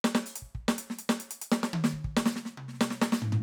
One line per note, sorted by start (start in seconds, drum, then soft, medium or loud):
0.04 snare loud
0.15 snare loud
0.26 closed hi-hat loud
0.36 closed hi-hat loud
0.42 kick soft
0.55 kick soft
0.68 snare loud
0.78 closed hi-hat loud
0.90 snare medium
0.99 closed hi-hat loud
1.09 snare loud
1.20 closed hi-hat loud
1.31 closed hi-hat loud
1.41 closed hi-hat loud
1.52 snare loud
1.63 snare loud
1.73 high tom loud
1.84 snare loud
1.93 kick soft
2.04 kick medium
2.17 snare loud
2.26 snare loud
2.45 snare medium
2.57 mid tom medium
2.68 snare soft
2.73 snare soft
2.81 snare loud
2.90 snare medium
3.01 snare loud
3.12 snare loud
3.22 floor tom loud
3.32 floor tom loud